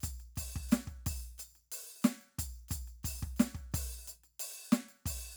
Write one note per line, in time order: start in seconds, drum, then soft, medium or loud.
0.01 kick medium
0.01 percussion soft
0.04 percussion loud
0.20 percussion soft
0.36 kick medium
0.36 percussion soft
0.38 percussion loud
0.56 kick medium
0.69 percussion medium
0.72 snare loud
0.72 percussion loud
0.88 kick soft
0.88 percussion soft
1.07 kick medium
1.07 percussion loud
1.38 percussion soft
1.38 percussion medium
1.56 percussion soft
1.72 percussion loud
2.03 percussion soft
2.04 snare loud
2.04 percussion loud
2.21 percussion soft
2.39 kick medium
2.39 percussion loud
2.69 kick medium
2.69 percussion medium
2.72 percussion loud
2.88 percussion soft
3.04 kick medium
3.04 percussion soft
3.06 percussion loud
3.23 kick medium
3.37 snare loud
3.37 percussion soft
3.40 percussion loud
3.55 kick soft
3.55 percussion soft
3.72 kick medium
3.72 percussion soft
3.75 percussion loud
4.08 percussion medium
4.08 percussion soft
4.24 percussion soft
4.40 percussion loud
4.72 snare loud
4.72 percussion soft
4.72 percussion medium
4.89 percussion soft
5.06 kick medium
5.06 percussion loud